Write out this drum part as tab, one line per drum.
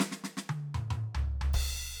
CC |------------x---|
SD |oooo------------|
T1 |----o-----------|
T2 |------oo--------|
FT |---------o-o----|
BD |------------o---|